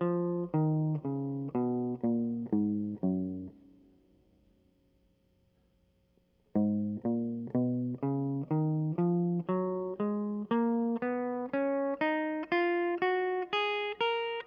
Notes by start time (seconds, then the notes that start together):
0.02 F3
0.55 D#3
1.06 C#3
1.57 B2
2.05 A#2
2.54 G#2
3.05 F#2
6.57 G#2
7.07 A#2
7.56 B2
8.04 C#3
8.52 D#3
8.99 F3
9.50 F#3
10.01 G#3
10.52 A#3
11.03 B3
11.54 C#4
12.02 D#4
12.52 F4
13.03 F#4
13.53 G#4
14.01 A#4